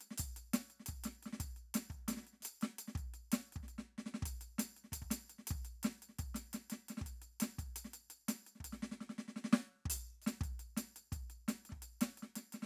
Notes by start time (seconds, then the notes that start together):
0.01 percussion
0.11 snare
0.18 kick, percussion
0.37 percussion
0.54 snare, percussion
0.70 percussion
0.80 snare
0.86 kick, percussion
1.04 snare, percussion
1.23 snare, percussion
1.33 snare
1.37 kick, snare, percussion
1.57 percussion
1.75 snare, percussion
1.90 kick, percussion
2.08 snare, percussion
2.11 snare
2.17 snare
2.22 snare
2.27 percussion
2.33 snare
2.41 snare, percussion
2.45 percussion
2.62 snare, percussion
2.79 percussion
2.88 snare
2.95 kick, percussion
3.14 percussion
3.32 snare, percussion
3.53 kick, percussion
3.63 snare
3.69 percussion
3.79 snare
3.98 snare
4.06 snare
4.14 snare
4.23 kick, percussion
4.41 percussion
4.59 snare, percussion
4.77 percussion
4.84 snare
4.92 kick, percussion
5.02 kick
5.11 snare, percussion
5.30 percussion
5.39 snare
5.47 kick, percussion
5.65 percussion
5.83 snare, percussion
6.02 percussion
6.09 snare
6.19 kick, percussion
6.35 snare, percussion
6.53 snare, percussion
6.70 snare, percussion
6.89 snare, percussion
6.98 kick, snare
7.07 percussion
7.22 percussion
7.40 snare, percussion
7.59 kick, percussion
7.76 percussion
7.85 snare
7.94 percussion
8.10 percussion
8.29 snare, percussion
8.47 percussion
8.56 snare
8.61 kick
8.65 percussion
8.73 snare
8.83 snare
8.92 snare
9.01 snare
9.10 snare
9.19 snare
9.28 snare
9.36 snare
9.45 snare
9.53 snare
9.86 kick
9.90 percussion
10.22 percussion
10.27 snare, percussion
10.41 kick, percussion
10.60 percussion
10.77 snare, percussion
10.96 percussion
11.12 kick, percussion
11.30 percussion
11.48 snare, percussion
11.66 snare, percussion
11.72 kick
11.82 percussion
12.01 snare, percussion
12.18 percussion
12.23 snare
12.36 snare, percussion
12.53 snare, percussion
12.63 snare